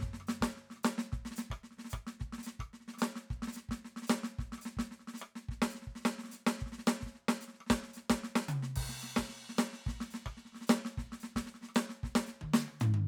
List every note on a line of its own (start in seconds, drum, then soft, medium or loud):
0.01 kick soft
0.01 snare soft
0.09 kick soft
0.14 snare soft
0.20 cross-stick soft
0.27 snare medium
0.27 hi-hat pedal soft
0.41 kick soft
0.41 snare medium
0.48 snare soft
0.57 snare soft
0.62 snare soft
0.70 snare soft
0.76 cross-stick soft
0.84 snare loud
0.84 hi-hat pedal medium
0.98 snare medium
1.12 kick soft
1.12 snare soft
1.20 kick soft
1.25 snare soft
1.31 snare soft
1.36 snare medium
1.36 hi-hat pedal medium
1.50 kick soft
1.50 cross-stick medium
1.64 snare soft
1.71 snare soft
1.77 snare soft
1.85 snare soft
1.90 kick soft
1.90 cross-stick medium
1.90 hi-hat pedal medium
1.99 kick soft
2.07 snare medium
2.20 kick soft
2.20 snare soft
2.27 kick soft
2.33 snare soft
2.38 snare soft
2.43 snare soft
2.43 hi-hat pedal medium
2.60 kick soft
2.60 cross-stick medium
2.65 kick soft
2.73 snare soft
2.80 snare soft
2.85 snare soft
2.88 snare soft
2.94 cross-stick soft
2.94 snare soft
2.99 snare medium
2.99 hi-hat pedal medium
3.16 snare soft
3.31 kick soft
3.31 snare soft
3.37 kick soft
3.42 snare medium
3.48 snare medium
3.53 snare soft
3.53 hi-hat pedal medium
3.69 kick soft
3.69 snare medium
3.85 snare soft
3.96 snare soft
4.02 snare soft
4.07 snare loud
4.07 hi-hat pedal medium
4.24 snare medium
4.39 kick soft
4.39 snare soft
4.45 kick soft
4.52 snare soft
4.58 cross-stick soft
4.58 hi-hat pedal medium
4.66 snare medium
4.77 kick soft
4.77 snare medium
4.91 snare soft
5.00 snare soft
5.08 snare soft
5.14 snare soft
5.14 hi-hat pedal medium
5.21 cross-stick medium
5.21 snare soft
5.36 snare soft
5.49 kick soft
5.49 snare soft
5.62 snare loud
5.70 hi-hat pedal medium
5.75 snare soft
5.82 snare soft
5.87 kick soft
5.87 snare soft
5.96 snare soft
6.01 snare soft
6.05 snare loud
6.19 snare soft
6.24 snare soft
6.32 snare soft
6.32 hi-hat pedal medium
6.47 snare loud
6.59 kick soft
6.59 snare soft
6.66 kick soft
6.66 snare soft
6.72 snare soft
6.79 snare soft
6.87 snare loud
6.87 hi-hat pedal medium
7.01 kick soft
7.01 snare soft
7.06 snare soft
7.15 snare soft
7.29 snare loud
7.41 snare soft
7.41 hi-hat pedal medium
7.48 snare soft
7.54 snare soft
7.61 cross-stick soft
7.67 snare soft
7.70 kick soft
7.70 snare loud
7.83 snare soft
7.88 snare soft
7.94 snare soft
7.94 hi-hat pedal medium
8.10 kick soft
8.10 snare loud
8.24 snare medium
8.36 snare loud
8.42 snare soft
8.48 hi-hat pedal medium
8.48 mid tom loud
8.63 snare soft
8.76 kick medium
8.76 crash medium
8.85 kick soft
8.89 kick soft
8.89 snare soft
9.00 snare soft
9.00 hi-hat pedal medium
9.17 kick soft
9.17 snare medium
9.29 snare soft
9.36 snare soft
9.42 snare soft
9.49 snare soft
9.56 snare soft
9.56 hi-hat pedal medium
9.59 snare loud
9.73 snare soft
9.87 kick medium
9.87 snare soft
9.93 kick soft
10.01 snare medium
10.11 snare medium
10.11 hi-hat pedal soft
10.26 kick soft
10.26 cross-stick medium
10.32 kick soft
10.37 snare soft
10.45 snare soft
10.52 snare soft
10.55 snare soft
10.61 snare soft
10.67 snare loud
10.67 hi-hat pedal medium
10.85 snare medium
10.98 kick soft
10.98 snare soft
11.04 kick soft
11.12 snare soft
11.20 snare soft
11.20 hi-hat pedal soft
11.36 kick soft
11.36 snare medium
11.41 kick soft
11.54 snare soft
11.61 snare soft
11.63 snare soft
11.69 cross-stick soft
11.75 snare loud
11.75 hi-hat pedal soft
11.90 snare soft
12.03 kick soft
12.03 snare soft
12.10 kick soft
12.15 snare loud
12.26 snare soft
12.26 hi-hat pedal soft
12.41 kick soft
12.41 high tom medium
12.54 snare loud
12.68 high tom soft
12.80 floor tom loud
12.80 hi-hat pedal medium
12.94 high tom medium